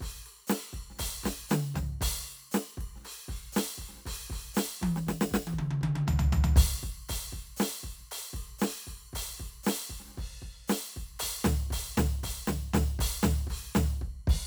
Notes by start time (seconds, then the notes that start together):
0.01 kick, crash
0.26 crash
0.47 snare, hi-hat pedal, crash
0.73 kick, crash
0.90 snare
0.95 snare
0.98 kick, snare, crash
1.00 snare
1.07 snare
1.24 kick, snare, crash
1.49 snare, hi-hat pedal, mid tom
1.75 kick, snare, floor tom
2.01 kick, crash
2.26 crash
2.52 snare, hi-hat pedal, crash
2.78 kick, crash
2.96 snare
3.00 snare
3.03 snare
3.05 snare, crash
3.29 kick, crash
3.53 hi-hat pedal
3.57 snare, crash
3.78 kick, crash
3.89 snare
3.93 snare
3.96 snare
3.98 snare
4.06 kick, snare, crash
4.30 kick, crash
4.54 snare, hi-hat pedal, crash
4.82 kick, high tom
4.97 snare
5.07 kick, snare
5.21 snare
5.31 kick, snare
5.47 high tom
5.53 kick
5.59 mid tom
5.71 mid tom
5.81 kick, mid tom
5.96 mid tom
6.08 kick, floor tom
6.20 floor tom
6.33 kick, floor tom
6.44 floor tom
6.56 kick, crash
6.83 kick
7.09 kick, crash
7.32 kick, crash
7.57 snare, hi-hat pedal
7.61 crash
7.84 kick, crash
8.00 snare
8.12 crash
8.34 kick, crash
8.59 snare, hi-hat pedal
8.63 crash
8.87 kick, crash
9.13 kick, crash
9.40 kick, crash
9.64 snare, hi-hat pedal
9.68 crash
9.90 kick, crash
10.00 snare
10.04 snare
10.07 snare
10.10 snare
10.13 snare
10.15 kick, snare
10.19 crash
10.42 kick
10.68 snare, hi-hat pedal, crash
10.97 kick
11.15 snare
11.20 kick, crash
11.45 snare, floor tom
11.71 kick, crash
11.98 snare, floor tom
12.24 kick, crash
12.48 snare, floor tom
12.74 snare, floor tom
12.99 kick, crash
13.23 snare, floor tom
13.47 kick, crash
13.75 snare, floor tom
14.02 kick
14.28 kick, crash